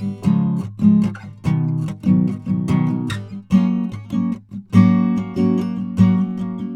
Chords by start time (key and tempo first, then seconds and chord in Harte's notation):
F# major, 147 BPM
0.24 C#:7
1.87 B:maj
3.50 F#:maj